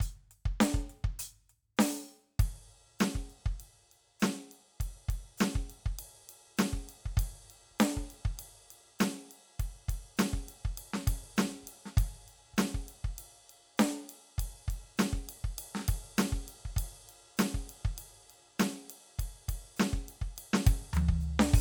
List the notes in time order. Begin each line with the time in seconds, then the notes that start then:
0.01 closed hi-hat, kick
0.32 closed hi-hat
0.46 kick
0.61 closed hi-hat, snare
0.75 kick
0.90 closed hi-hat
1.05 kick
1.20 closed hi-hat
1.50 closed hi-hat
1.78 open hi-hat, snare, hi-hat pedal
2.40 kick, ride
2.72 ride
3.00 snare, hi-hat pedal, ride
3.16 kick
3.31 ride
3.46 kick, crash
3.61 ride
3.92 ride
4.21 snare, hi-hat pedal, ride
4.52 ride
4.81 kick, ride
5.09 kick, ride
5.38 snare, hi-hat pedal, ride
5.56 kick
5.71 ride
5.87 kick
6.00 ride
6.30 ride
6.58 snare, hi-hat pedal, ride
6.74 kick
6.90 ride
7.06 kick
7.18 kick, ride
7.51 ride
7.72 kick
7.80 snare, hi-hat pedal, ride
7.98 kick
8.11 ride
8.26 kick
8.40 ride
8.71 ride
9.00 snare, hi-hat pedal, ride
9.32 ride
9.60 kick, ride
9.89 kick, ride
10.18 snare, hi-hat pedal, ride
10.34 kick
10.49 ride
10.66 kick
10.78 ride
10.94 snare
10.98 snare
11.00 snare
11.04 snare
11.08 kick, ride
11.37 snare, hi-hat pedal, ride
11.64 kick
11.68 ride
11.86 snare
11.98 kick, ride
12.29 ride
12.54 kick, hi-hat pedal
12.59 snare, ride
12.75 kick
12.89 ride
13.05 kick
13.19 ride
13.50 ride
13.78 snare, hi-hat pedal, ride
14.10 ride
14.39 kick, ride
14.69 kick, ride
14.98 snare, hi-hat pedal, ride
15.13 kick
15.30 ride
15.45 kick
15.59 ride
15.76 snare
15.80 snare
15.83 snare
15.85 kick, snare, ride
16.18 snare, hi-hat pedal, ride
16.33 kick
16.49 ride
16.66 kick
16.77 kick, ride
17.10 ride
17.38 snare, hi-hat pedal, ride
17.55 kick
17.70 ride
17.86 kick
17.99 ride
18.30 ride
18.60 snare, hi-hat pedal, ride
18.91 ride
19.20 kick, ride
19.49 kick, ride
19.77 snare, hi-hat pedal, ride
19.94 kick
20.09 ride
20.22 kick
20.37 hi-hat pedal, ride
20.54 snare
20.67 kick, ride
20.94 floor tom, hi-hat pedal, high tom
21.09 kick
21.21 hi-hat pedal
21.40 snare
21.54 open hi-hat, kick